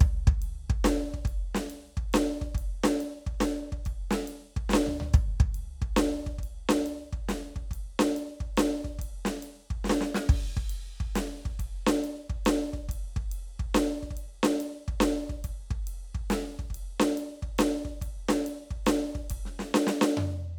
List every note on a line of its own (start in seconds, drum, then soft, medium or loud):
0.01 kick loud
0.01 ride medium
0.28 kick loud
0.42 ride medium
0.70 kick loud
0.85 snare loud
0.85 ride medium
1.14 kick medium
1.25 kick medium
1.25 ride soft
1.55 snare loud
1.70 ride medium
1.97 kick medium
2.14 snare loud
2.14 ride medium
2.42 kick medium
2.55 kick medium
2.55 ride medium
2.84 snare loud
3.01 ride medium
3.27 kick medium
3.35 kick soft
3.41 snare loud
3.41 ride medium
3.73 kick medium
3.86 kick medium
3.86 ride soft
4.11 snare loud
4.28 ride medium
4.57 kick medium
4.70 snare loud
4.74 snare loud
4.87 floor tom medium
5.01 floor tom medium
5.14 kick loud
5.14 ride soft
5.40 kick loud
5.55 ride medium
5.82 kick medium
5.97 snare loud
5.97 ride medium
6.27 kick medium
6.39 kick medium
6.44 ride soft
6.69 snare loud
6.86 ride medium
7.13 kick medium
7.22 kick soft
7.29 snare loud
7.29 ride medium
7.56 kick medium
7.71 kick medium
7.71 ride medium
8.00 snare loud
8.17 ride medium
8.41 kick medium
8.58 snare loud
8.58 ride medium
8.85 kick medium
8.99 kick medium
8.99 ride medium
9.26 snare loud
9.43 ride medium
9.71 kick medium
9.85 snare loud
9.90 snare loud
10.01 snare medium
10.15 snare loud
10.29 kick loud
10.29 crash medium
10.57 kick medium
10.70 ride medium
11.01 kick medium
11.16 snare loud
11.16 ride medium
11.46 kick medium
11.60 kick medium
11.60 ride medium
11.87 snare loud
12.04 ride medium
12.30 kick medium
12.46 snare loud
12.46 ride medium
12.74 kick medium
12.89 kick medium
12.89 ride medium
13.17 kick medium
13.32 ride medium
13.60 kick medium
13.75 snare loud
13.75 ride medium
14.03 kick soft
14.11 kick medium
14.17 ride medium
14.44 snare loud
14.61 ride medium
14.88 kick medium
15.01 snare loud
15.01 ride medium
15.30 kick medium
15.45 kick medium
15.45 ride medium
15.71 kick medium
15.88 ride medium
16.15 kick medium
16.31 snare loud
16.31 ride medium
16.59 kick medium
16.71 kick soft
16.75 ride medium
17.00 snare loud
17.18 ride medium
17.43 kick medium
17.59 snare loud
17.59 ride medium
17.85 kick soft
18.02 kick medium
18.02 ride medium
18.29 snare loud
18.47 ride medium
18.71 kick medium
18.87 snare loud
18.87 ride medium
19.15 kick medium
19.30 kick medium
19.30 ride medium
19.46 snare soft
19.60 snare medium
19.75 snare loud
19.87 snare loud
20.02 snare loud
20.02 hi-hat pedal soft
20.18 mid tom loud